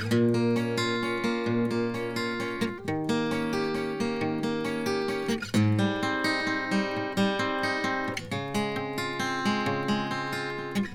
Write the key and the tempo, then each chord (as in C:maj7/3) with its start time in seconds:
F minor, 88 BPM
0.09 A#:min
2.81 D#:7
5.54 G#:maj7
8.27 C#:maj7